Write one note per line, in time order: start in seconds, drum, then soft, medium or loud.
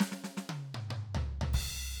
0.01 snare loud
0.11 snare medium
0.24 snare medium
0.37 snare medium
0.49 high tom loud
0.74 mid tom loud
0.90 mid tom loud
1.14 floor tom loud
1.41 floor tom loud
1.53 kick medium
1.53 crash loud